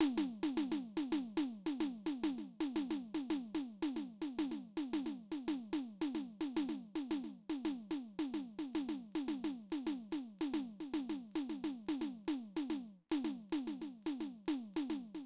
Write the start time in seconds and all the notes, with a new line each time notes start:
0.03 snare
0.18 snare
0.43 snare
0.57 snare
0.72 snare
0.97 snare
1.12 snare
1.37 snare
1.66 snare
1.80 snare
2.06 snare
2.24 snare
2.38 snare
2.60 snare
2.76 snare
2.91 snare
3.14 snare
3.30 snare
3.55 snare
3.82 snare
3.96 snare
4.22 snare
4.39 snare
4.51 snare
4.77 snare
4.93 snare
5.06 snare
5.32 snare
5.48 snare
5.73 snare
6.01 snare
6.15 snare
6.41 snare
6.57 snare
6.69 snare
6.95 snare
7.11 snare
7.24 snare
7.50 snare
7.65 snare
7.91 snare
8.19 snare
8.34 snare
8.59 snare
8.73 snare, hi-hat pedal
8.89 snare
9.12 snare, hi-hat pedal
9.28 snare
9.44 snare
9.70 snare, hi-hat pedal
9.87 snare
10.12 snare, hi-hat pedal
10.39 snare, hi-hat pedal
10.54 snare
10.80 snare
10.88 hi-hat pedal
10.94 snare
11.09 snare
11.31 snare, hi-hat pedal
11.49 snare
11.64 snare
11.87 snare, hi-hat pedal
12.01 snare
12.25 snare, hi-hat pedal
12.56 snare, hi-hat pedal
12.70 snare
13.10 snare, hi-hat pedal
13.24 snare
13.50 snare, hi-hat pedal
13.67 snare
13.82 snare
14.03 snare, hi-hat pedal
14.20 snare
14.46 snare, hi-hat pedal
14.74 snare, hi-hat pedal
14.90 snare
15.15 snare